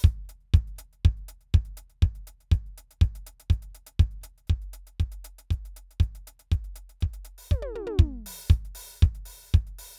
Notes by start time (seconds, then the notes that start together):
0.01 kick, hi-hat pedal
0.06 closed hi-hat
0.17 closed hi-hat
0.26 closed hi-hat, kick
0.41 closed hi-hat
0.55 kick, closed hi-hat
0.68 closed hi-hat
0.77 closed hi-hat, kick
0.94 closed hi-hat
1.06 kick, closed hi-hat
1.18 closed hi-hat
1.29 closed hi-hat
1.42 closed hi-hat
1.55 kick, closed hi-hat
1.66 closed hi-hat
1.78 closed hi-hat
1.91 closed hi-hat
2.03 kick, closed hi-hat
2.16 closed hi-hat
2.28 closed hi-hat
2.41 closed hi-hat
2.52 kick, closed hi-hat
2.67 closed hi-hat
2.79 closed hi-hat
2.92 closed hi-hat
3.02 kick, closed hi-hat
3.16 closed hi-hat
3.27 closed hi-hat
3.41 closed hi-hat
3.51 kick, closed hi-hat
3.63 closed hi-hat
3.71 kick
3.76 closed hi-hat
3.88 closed hi-hat
4.00 kick, closed hi-hat
4.12 closed hi-hat
4.22 closed hi-hat, kick
4.39 closed hi-hat
4.48 kick, closed hi-hat
4.63 closed hi-hat
4.74 closed hi-hat
4.88 closed hi-hat
5.01 kick, closed hi-hat
5.13 closed hi-hat
5.25 closed hi-hat
5.39 closed hi-hat
5.51 kick, closed hi-hat
5.66 closed hi-hat
5.77 closed hi-hat
5.92 closed hi-hat
6.01 kick, closed hi-hat
6.16 closed hi-hat
6.28 closed hi-hat
6.40 closed hi-hat
6.53 kick, closed hi-hat
6.65 closed hi-hat
6.75 closed hi-hat, kick
6.90 closed hi-hat
7.02 kick, closed hi-hat
7.14 closed hi-hat
7.26 closed hi-hat
7.39 open hi-hat
7.49 kick, hi-hat pedal, high tom
7.63 high tom
7.76 mid tom
7.87 mid tom
8.00 kick
8.20 kick
8.27 open hi-hat
8.44 open hi-hat
8.49 kick, closed hi-hat, hi-hat pedal
8.66 closed hi-hat
8.76 open hi-hat
8.92 open hi-hat
9.00 kick, hi-hat pedal
9.04 closed hi-hat
9.16 closed hi-hat
9.26 open hi-hat
9.44 open hi-hat
9.51 hi-hat pedal
9.55 kick, closed hi-hat
9.68 closed hi-hat
9.79 open hi-hat
9.94 open hi-hat